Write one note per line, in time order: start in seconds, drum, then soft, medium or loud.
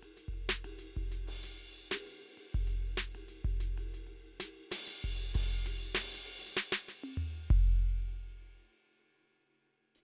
0.01 hi-hat pedal medium
0.01 ride medium
0.17 snare soft
0.29 kick soft
0.34 ride soft
0.49 snare loud
0.60 hi-hat pedal medium
0.65 ride medium
0.79 snare soft
0.96 kick soft
0.96 ride soft
1.12 snare soft
1.28 hi-hat pedal medium
1.28 ride medium
1.43 snare soft
1.59 ride soft
1.75 ride soft
1.90 snare loud
1.90 hi-hat pedal medium
1.90 ride loud
2.07 snare soft
2.22 ride soft
2.38 ride soft
2.53 kick medium
2.53 hi-hat pedal medium
2.53 crash medium
2.67 snare soft
2.71 snare soft
2.83 ride soft
2.98 snare loud
3.11 hi-hat pedal medium
3.15 ride medium
3.28 snare soft
3.45 kick medium
3.45 ride soft
3.60 snare soft
3.77 hi-hat pedal medium
3.77 ride medium
3.94 snare soft
4.07 ride soft
4.38 snare medium
4.38 hi-hat pedal medium
4.38 ride medium
4.71 snare loud
4.71 ride medium
4.88 snare soft
5.02 kick soft
5.02 hi-hat pedal medium
5.02 ride soft
5.34 kick medium
5.34 snare soft
5.34 ride medium
5.64 snare soft
5.64 hi-hat pedal medium
5.64 ride medium
5.95 snare loud
5.95 ride medium
6.15 snare soft
6.25 hi-hat pedal medium
6.25 ride soft
6.39 snare soft
6.46 snare soft
6.52 snare soft
6.57 snare loud
6.72 snare loud
6.87 snare soft
6.87 hi-hat pedal medium
7.04 high tom medium
7.17 floor tom medium
7.51 kick loud
7.51 crash medium
9.95 hi-hat pedal medium